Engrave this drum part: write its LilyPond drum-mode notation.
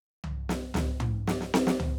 \new DrumStaff \drummode { \time 4/4 \tempo 4 = 118 r8 tomfh8 sn8 <tomfh sn>8 toml8 sn16 sn16 sn16 sn16 tomfh8 | }